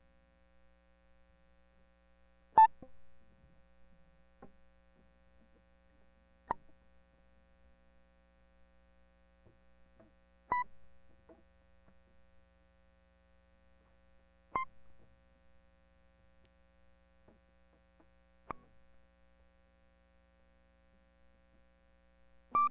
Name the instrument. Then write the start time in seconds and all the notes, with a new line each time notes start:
electric guitar
2.58 A5
6.51 A#5
10.52 B5
14.56 C6
18.51 C#6
22.55 D6